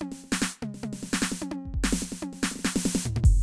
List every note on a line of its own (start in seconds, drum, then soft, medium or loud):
0.01 high tom loud
0.12 snare medium
0.24 snare soft
0.32 snare loud
0.42 snare loud
0.62 mid tom loud
0.74 snare soft
0.83 mid tom loud
0.93 snare medium
1.03 snare medium
1.13 snare loud
1.22 snare loud
1.32 snare medium
1.42 high tom loud
1.51 high tom loud
1.66 kick soft
1.74 kick medium
1.84 snare loud
1.92 snare loud
2.02 snare medium
2.22 high tom loud
2.33 snare soft
2.43 snare loud
2.51 snare medium
2.55 snare medium
2.59 snare soft
2.65 snare loud
2.76 snare loud
2.81 snare loud
2.81 hi-hat pedal soft
2.95 snare loud
3.05 floor tom loud
3.16 floor tom loud
3.24 kick loud
3.24 crash loud